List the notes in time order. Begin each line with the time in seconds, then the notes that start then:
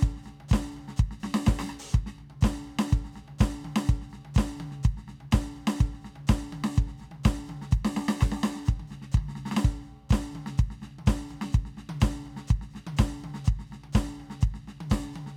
0.01 kick, hi-hat pedal
0.05 high tom
0.17 snare
0.23 snare, hi-hat pedal
0.29 high tom
0.41 high tom
0.49 kick, hi-hat pedal
0.54 snare
0.65 high tom
0.72 hi-hat pedal
0.77 high tom
0.88 snare
0.97 kick, hi-hat pedal
1.01 high tom
1.11 snare
1.21 snare, hi-hat pedal
1.35 snare
1.45 kick, snare, hi-hat pedal
1.59 snare
1.70 cross-stick
1.80 open hi-hat
1.92 kick, snare, hi-hat pedal
2.07 snare
2.15 hi-hat pedal, high tom
2.30 high tom
2.42 kick, snare, hi-hat pedal
2.56 high tom
2.64 hi-hat pedal, high tom
2.79 snare
2.90 kick, hi-hat pedal, high tom
3.05 snare
3.13 snare, hi-hat pedal
3.17 high tom
3.28 high tom
3.39 kick, snare, hi-hat pedal
3.52 high tom
3.62 hi-hat pedal, high tom
3.76 snare
3.87 kick, hi-hat pedal, high tom
4.02 snare
4.10 snare, hi-hat pedal
4.14 high tom
4.25 high tom
4.35 kick, snare, hi-hat pedal
4.49 high tom
4.57 hi-hat pedal, high tom
4.71 snare
4.84 kick, hi-hat pedal, high tom
4.98 snare
5.07 snare, hi-hat pedal, high tom
5.21 high tom
5.32 kick, snare, hi-hat pedal
5.45 high tom
5.54 hi-hat pedal, high tom
5.68 snare
5.79 kick, hi-hat pedal
5.83 high tom
5.94 snare
6.01 hi-hat pedal
6.05 snare, high tom
6.16 high tom
6.28 kick, snare, hi-hat pedal
6.41 high tom
6.51 hi-hat pedal, high tom
6.64 snare
6.76 kick, hi-hat pedal, high tom
6.88 snare
6.98 snare, hi-hat pedal, high tom
7.12 high tom
7.24 kick, snare, hi-hat pedal
7.37 high tom
7.46 hi-hat pedal, high tom
7.62 snare
7.72 kick, hi-hat pedal, high tom
7.85 snare
7.95 snare, hi-hat pedal
8.09 snare
8.19 snare, hi-hat pedal
8.23 kick
8.32 snare
8.42 snare, hi-hat pedal
8.56 snare
8.65 kick, snare, hi-hat pedal
8.80 high tom
8.88 snare, hi-hat pedal
9.02 snare
9.12 kick, hi-hat pedal
9.18 high tom
9.29 snare
9.36 snare
9.46 snare
9.52 snare
9.57 snare
9.61 kick, hi-hat pedal
9.83 hi-hat pedal
10.10 kick, snare, hi-hat pedal
10.26 high tom
10.32 hi-hat pedal, high tom
10.47 snare
10.58 kick, hi-hat pedal, high tom
10.71 snare
10.80 snare, hi-hat pedal
10.88 high tom
10.99 high tom
11.07 kick, snare, hi-hat pedal
11.20 high tom
11.29 hi-hat pedal, high tom
11.42 snare
11.53 kick, hi-hat pedal, high tom
11.66 snare
11.75 snare, hi-hat pedal, high tom
11.90 high tom
12.01 kick, snare, hi-hat pedal
12.14 high tom
12.22 hi-hat pedal, high tom
12.37 snare
12.48 kick, hi-hat pedal, high tom
12.62 snare
12.71 hi-hat pedal, high tom
12.76 snare
12.87 high tom
12.97 kick, snare, hi-hat pedal
13.11 high tom
13.20 hi-hat pedal
13.24 high tom
13.35 snare
13.45 kick, hi-hat pedal, high tom
13.60 snare
13.67 hi-hat pedal
13.72 snare, high tom
13.84 high tom
13.93 kick, snare, hi-hat pedal
14.08 high tom
14.16 hi-hat pedal
14.20 high tom
14.30 snare
14.41 kick, hi-hat pedal, high tom
14.55 snare
14.64 snare, hi-hat pedal, high tom
14.81 high tom
14.90 kick, snare, hi-hat pedal
14.98 snare
15.05 high tom
15.13 hi-hat pedal, high tom
15.27 snare